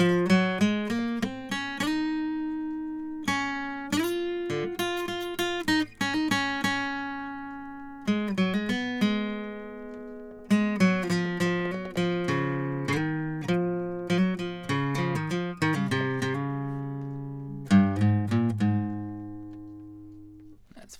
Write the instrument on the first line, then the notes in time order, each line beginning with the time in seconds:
acoustic guitar
0.00 F3
0.32 F#3
0.63 G#3
0.91 A#3
1.24 C4
1.53 C#4
1.82 D#4
3.29 C#4
3.94 F4
4.51 D3
4.80 F4
5.10 F4
5.40 F4
5.69 D#4
6.02 C#4
6.15 D#4
6.33 C#4
6.66 C#4
8.09 G#3
8.39 F#3
8.55 G#3
8.71 B3
9.03 G#3
10.52 G#3
10.82 F#3
11.12 F3
11.42 F3
11.73 F#3
11.98 F3
12.30 C#3
12.90 D3
12.99 D#3
13.50 F3
14.11 F#3
14.40 F3
14.71 C#3
14.96 C#3 F3
15.17 D#3
15.32 F3
15.63 D#3
15.75 C#3 G3
15.93 C3
16.24 C#3
17.72 G2
17.98 G#2
18.33 A#2
18.62 G#2